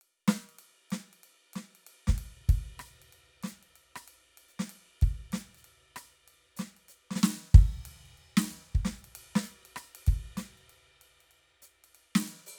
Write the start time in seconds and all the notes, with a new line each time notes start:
0.01 ride
0.28 snare, ride
0.49 ride
0.59 ride
0.91 snare, ride
1.13 ride
1.24 ride
1.54 snare, ride
1.76 ride
1.87 ride
2.08 kick, snare
2.18 ride
2.49 kick, ride
2.80 cross-stick, ride
2.85 hi-hat pedal
3.02 ride
3.13 ride
3.43 snare, ride
3.48 hi-hat pedal
3.63 ride
3.76 ride
3.96 cross-stick
4.08 ride
4.38 ride
4.49 hi-hat pedal
4.60 snare
4.70 ride
5.02 kick, ride
5.33 snare, ride
5.37 hi-hat pedal
5.55 hi-hat pedal, ride
5.65 ride
5.96 cross-stick, hi-hat pedal, ride
6.28 ride
6.57 snare, hi-hat pedal, ride
6.77 ride
6.89 hi-hat pedal, ride
7.11 snare
7.16 snare, hi-hat pedal
7.24 snare
7.55 kick, crash
7.86 ride
8.06 ride
8.18 ride
8.38 snare
8.51 ride
8.75 kick
8.85 snare
9.05 ride
9.16 ride
9.36 snare
9.43 hi-hat pedal
9.48 ride
9.66 ride
9.76 cross-stick
9.95 ride
10.07 kick, ride
10.38 snare, hi-hat pedal, ride
10.58 ride
10.70 ride
11.02 ride
11.21 ride
11.31 ride
11.63 hi-hat pedal, ride
11.84 ride
11.95 ride
12.16 snare
12.20 hi-hat pedal
12.28 ride
12.47 open hi-hat